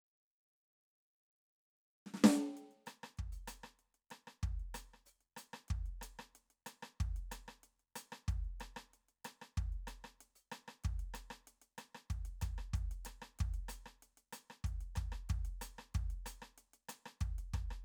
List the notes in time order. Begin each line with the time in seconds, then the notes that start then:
2.06 snare
2.14 snare
2.17 snare
2.24 snare
2.57 closed hi-hat
2.71 closed hi-hat
2.86 closed hi-hat, cross-stick
3.03 cross-stick
3.17 kick, closed hi-hat
3.32 closed hi-hat
3.47 closed hi-hat, cross-stick
3.63 cross-stick
3.79 closed hi-hat
3.94 closed hi-hat
4.10 cross-stick, closed hi-hat
4.27 cross-stick
4.43 kick, closed hi-hat
4.59 closed hi-hat
4.74 closed hi-hat, cross-stick
4.93 cross-stick
5.06 hi-hat pedal, open hi-hat
5.21 closed hi-hat
5.36 closed hi-hat, cross-stick
5.53 cross-stick
5.68 kick, closed hi-hat
5.86 closed hi-hat
6.01 cross-stick, closed hi-hat
6.19 cross-stick
6.35 closed hi-hat
6.50 closed hi-hat
6.66 cross-stick, closed hi-hat
6.82 cross-stick
7.00 kick, closed hi-hat
7.16 closed hi-hat
7.32 cross-stick, closed hi-hat
7.48 cross-stick
7.63 closed hi-hat
7.79 closed hi-hat
7.95 closed hi-hat, cross-stick
8.12 cross-stick
8.28 kick, closed hi-hat
8.44 closed hi-hat
8.60 cross-stick, closed hi-hat
8.76 cross-stick
8.93 closed hi-hat
9.09 closed hi-hat
9.24 cross-stick, closed hi-hat
9.41 cross-stick
9.57 kick, closed hi-hat
9.72 closed hi-hat
9.87 cross-stick, closed hi-hat
10.04 cross-stick
10.20 closed hi-hat
10.35 closed hi-hat
10.52 cross-stick, closed hi-hat
10.68 cross-stick
10.84 kick, closed hi-hat
10.99 closed hi-hat
11.14 cross-stick, closed hi-hat
11.30 cross-stick
11.47 closed hi-hat
11.62 closed hi-hat
11.78 cross-stick, closed hi-hat
11.95 cross-stick
12.10 kick, closed hi-hat
12.25 closed hi-hat
12.41 kick, cross-stick, closed hi-hat
12.58 cross-stick
12.73 kick, closed hi-hat
12.91 closed hi-hat
13.05 cross-stick, closed hi-hat
13.22 cross-stick
13.39 kick, closed hi-hat
13.54 closed hi-hat
13.68 closed hi-hat, cross-stick
13.86 cross-stick
14.02 closed hi-hat
14.17 closed hi-hat
14.32 closed hi-hat, cross-stick
14.50 cross-stick
14.64 kick, closed hi-hat
14.81 closed hi-hat
14.95 kick, cross-stick, closed hi-hat
15.12 cross-stick
15.29 kick, closed hi-hat
15.45 closed hi-hat
15.61 closed hi-hat, cross-stick
15.78 cross-stick
15.94 kick, closed hi-hat
16.10 closed hi-hat
16.26 closed hi-hat, cross-stick
16.42 cross-stick
16.58 closed hi-hat
16.73 closed hi-hat
16.89 cross-stick, closed hi-hat
17.06 cross-stick
17.21 kick, closed hi-hat
17.38 closed hi-hat
17.53 kick, cross-stick, closed hi-hat
17.70 cross-stick